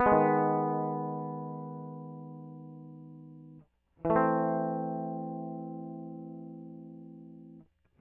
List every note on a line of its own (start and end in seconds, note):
0.00 3.62 B3
0.06 3.65 G#3
0.12 3.63 D#3
4.05 7.65 E3
4.10 7.64 A3
4.16 7.62 C4